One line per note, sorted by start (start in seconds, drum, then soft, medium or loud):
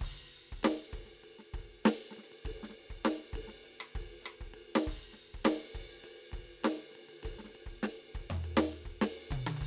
0.01 kick medium
0.01 hi-hat pedal medium
0.01 crash medium
0.12 kick soft
0.14 kick soft
0.52 kick soft
0.63 snare loud
0.63 hi-hat pedal medium
0.63 ride loud
0.93 kick soft
0.93 ride medium
0.98 kick soft
1.05 snare soft
1.21 hi-hat pedal soft
1.21 ride medium
1.39 snare soft
1.45 cross-stick soft
1.51 kick soft
1.51 snare soft
1.51 ride medium
1.60 kick soft
1.84 snare loud
1.84 hi-hat pedal medium
1.84 ride loud
2.11 snare soft
2.11 hi-hat pedal soft
2.16 snare soft
2.16 ride medium
2.23 cross-stick soft
2.32 ride medium
2.44 kick soft
2.44 hi-hat pedal medium
2.44 ride loud
2.50 kick soft
2.55 kick soft
2.63 snare soft
2.69 snare soft
2.77 ride soft
2.90 kick soft
3.03 snare loud
3.03 hi-hat pedal medium
3.03 ride loud
3.33 kick soft
3.33 ride loud
3.44 kick soft
3.44 snare soft
3.63 hi-hat pedal medium
3.63 ride soft
3.80 cross-stick medium
3.95 kick medium
3.95 ride medium
4.02 kick soft
4.22 cross-stick medium
4.22 hi-hat pedal medium
4.41 kick soft
4.46 kick soft
4.54 ride medium
4.75 snare loud
4.86 kick medium
4.86 hi-hat pedal medium
4.86 crash medium
4.94 kick soft
4.98 kick soft
5.13 snare soft
5.34 kick soft
5.45 snare loud
5.45 hi-hat pedal medium
5.45 ride loud
5.75 kick soft
5.75 ride medium
5.80 kick soft
5.90 snare soft
5.93 snare soft
6.03 hi-hat pedal medium
6.03 ride medium
6.32 kick soft
6.32 ride medium
6.39 kick soft
6.63 snare loud
6.63 hi-hat pedal medium
6.63 ride loud
6.91 snare soft
6.95 ride medium
7.00 snare soft
7.08 ride medium
7.23 kick soft
7.23 hi-hat pedal medium
7.23 ride medium
7.30 kick soft
7.38 snare soft
7.44 snare soft
7.48 snare soft
7.55 ride medium
7.66 kick soft
7.82 snare medium
7.82 hi-hat pedal medium
7.82 ride loud
8.15 kick soft
8.15 ride medium
8.21 kick soft
8.30 floor tom loud
8.42 hi-hat pedal medium
8.42 ride medium
8.57 snare loud
8.73 ride medium
8.85 kick soft
9.01 snare loud
9.01 hi-hat pedal medium
9.01 ride loud
9.30 kick medium
9.30 mid tom medium
9.46 high tom loud
9.56 hi-hat pedal medium
9.56 high tom soft
9.61 kick soft
9.61 crash medium